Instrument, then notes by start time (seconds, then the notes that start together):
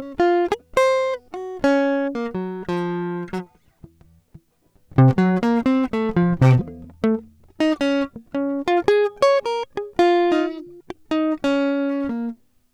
acoustic guitar
0.00 C#4
0.21 F4
0.78 C5
1.35 F#4
1.65 C#4
2.16 A#3
2.36 F#3
2.70 F3
3.35 F#3
5.00 C3
5.10 C3
5.19 F#3
5.44 A#3
5.67 C4
5.94 A3
6.18 F3
6.44 C3
6.53 B2
6.60 F3
7.05 A3
7.62 D#4
7.82 C#4
8.36 C#4
8.69 F4
8.89 G#4
9.23 C#5
9.47 A#4
9.78 G#4
10.00 F4
10.33 D#4
11.12 D#4
11.45 C#4
12.11 A#3